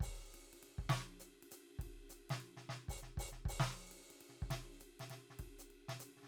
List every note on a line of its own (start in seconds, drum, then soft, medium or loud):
0.01 open hi-hat medium
0.01 kick medium
0.35 ride soft
0.54 ride soft
0.63 ride soft
0.69 snare soft
0.79 kick soft
0.90 snare medium
0.90 hi-hat pedal soft
0.90 ride medium
1.20 hi-hat pedal medium
1.20 ride soft
1.33 snare soft
1.43 ride soft
1.52 hi-hat pedal medium
1.52 ride medium
1.70 snare soft
1.76 kick soft
1.76 snare soft
1.80 snare soft
1.80 ride soft
1.99 snare soft
2.10 hi-hat pedal medium
2.10 ride soft
2.30 snare medium
2.30 ride soft
2.41 ride soft
2.57 snare soft
2.70 snare medium
2.89 open hi-hat medium
2.89 kick soft
2.98 hi-hat pedal medium
3.03 snare soft
3.18 open hi-hat medium
3.18 kick soft
3.28 hi-hat pedal medium
3.33 snare soft
3.46 open hi-hat medium
3.46 kick medium
3.60 snare medium
3.92 ride soft
4.10 snare soft
4.10 ride soft
4.21 ride soft
4.30 snare soft
4.43 kick soft
4.51 snare medium
4.51 ride medium
4.80 hi-hat pedal soft
4.80 ride soft
5.00 snare soft
5.00 ride soft
5.10 snare soft
5.10 ride soft
5.31 snare soft
5.40 kick soft
5.40 ride medium
5.59 hi-hat pedal medium
5.71 ride soft
5.89 snare medium
5.89 ride soft
6.00 hi-hat pedal medium
6.00 ride medium
6.17 snare soft
6.21 snare soft
6.24 snare soft